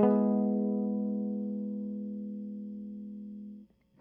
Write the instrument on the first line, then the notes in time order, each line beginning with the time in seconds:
electric guitar
0.00 G#3 B3